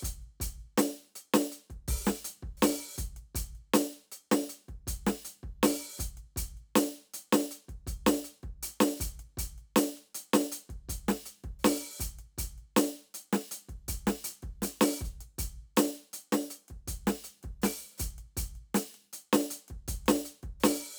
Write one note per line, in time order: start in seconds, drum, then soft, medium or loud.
0.01 closed hi-hat loud
0.01 kick medium
0.01 hi-hat pedal medium
0.22 closed hi-hat soft
0.40 closed hi-hat loud
0.40 kick medium
0.59 closed hi-hat soft
0.78 closed hi-hat loud
0.78 snare loud
0.96 closed hi-hat soft
1.15 closed hi-hat medium
1.34 snare loud
1.34 closed hi-hat soft
1.51 closed hi-hat medium
1.70 kick soft
1.70 closed hi-hat soft
1.88 open hi-hat loud
1.88 kick medium
2.07 snare loud
2.17 hi-hat pedal soft
2.24 closed hi-hat loud
2.42 kick medium
2.57 hi-hat pedal soft
2.62 open hi-hat loud
2.62 snare loud
2.95 closed hi-hat loud
2.95 kick medium
2.95 hi-hat pedal medium
3.16 closed hi-hat soft
3.35 closed hi-hat loud
3.35 kick medium
3.55 closed hi-hat soft
3.73 closed hi-hat loud
3.73 snare loud
3.93 closed hi-hat soft
4.11 closed hi-hat medium
4.31 snare loud
4.49 closed hi-hat medium
4.68 kick soft
4.68 closed hi-hat soft
4.87 closed hi-hat loud
4.87 kick medium
5.06 snare loud
5.25 closed hi-hat medium
5.43 kick medium
5.43 closed hi-hat soft
5.63 open hi-hat loud
5.63 snare loud
5.98 closed hi-hat loud
5.98 kick medium
5.98 hi-hat pedal medium
6.17 closed hi-hat soft
6.36 closed hi-hat loud
6.36 kick medium
6.57 closed hi-hat soft
6.75 closed hi-hat loud
6.75 snare loud
6.95 closed hi-hat soft
7.13 closed hi-hat loud
7.32 snare loud
7.51 closed hi-hat medium
7.68 kick soft
7.68 closed hi-hat soft
7.87 closed hi-hat medium
7.87 kick medium
8.06 snare loud
8.24 closed hi-hat medium
8.43 kick medium
8.43 closed hi-hat soft
8.62 open hi-hat loud
8.80 snare loud
8.97 closed hi-hat loud
8.97 kick medium
8.97 hi-hat pedal medium
9.19 closed hi-hat soft
9.37 closed hi-hat loud
9.37 kick medium
9.58 closed hi-hat soft
9.76 closed hi-hat loud
9.76 snare loud
9.97 closed hi-hat soft
10.14 closed hi-hat loud
10.33 snare loud
10.33 closed hi-hat soft
10.52 closed hi-hat loud
10.69 kick soft
10.69 closed hi-hat soft
10.89 closed hi-hat loud
10.89 kick medium
11.08 snare loud
11.25 closed hi-hat medium
11.44 kick medium
11.44 closed hi-hat soft
11.59 hi-hat pedal soft
11.64 open hi-hat loud
11.64 snare loud
11.98 closed hi-hat loud
11.98 kick medium
11.98 hi-hat pedal medium
12.18 closed hi-hat soft
12.38 closed hi-hat loud
12.38 kick medium
12.58 closed hi-hat soft
12.76 closed hi-hat loud
12.76 snare loud
13.14 closed hi-hat loud
13.33 snare loud
13.33 closed hi-hat soft
13.51 closed hi-hat loud
13.68 kick soft
13.68 closed hi-hat soft
13.88 closed hi-hat loud
13.88 kick medium
14.07 snare loud
14.07 closed hi-hat soft
14.24 closed hi-hat loud
14.42 kick medium
14.42 closed hi-hat soft
14.62 closed hi-hat loud
14.62 snare loud
14.81 open hi-hat loud
14.81 snare loud
14.99 kick medium
14.99 hi-hat pedal soft
15.04 closed hi-hat medium
15.20 closed hi-hat medium
15.38 closed hi-hat loud
15.38 kick medium
15.76 closed hi-hat loud
15.76 snare loud
15.95 closed hi-hat soft
16.13 closed hi-hat loud
16.32 snare loud
16.32 closed hi-hat medium
16.50 closed hi-hat medium
16.68 kick soft
16.68 closed hi-hat soft
16.87 closed hi-hat loud
16.87 kick medium
17.07 snare loud
17.24 closed hi-hat medium
17.41 kick medium
17.41 snare soft
17.41 closed hi-hat soft
17.62 open hi-hat loud
17.62 snare loud
17.62 hi-hat pedal medium
17.98 closed hi-hat loud
17.98 kick medium
17.98 hi-hat pedal medium
18.18 closed hi-hat soft
18.37 closed hi-hat loud
18.37 kick medium
18.55 closed hi-hat soft
18.74 closed hi-hat loud
18.74 snare loud
18.94 closed hi-hat soft
19.13 closed hi-hat medium
19.33 snare loud
19.50 closed hi-hat loud
19.68 kick soft
19.68 closed hi-hat soft
19.88 closed hi-hat loud
19.88 kick medium
20.06 snare loud
20.06 closed hi-hat soft
20.25 closed hi-hat medium
20.43 kick medium
20.43 closed hi-hat soft
20.60 snare loud
20.60 hi-hat pedal soft
20.64 open hi-hat loud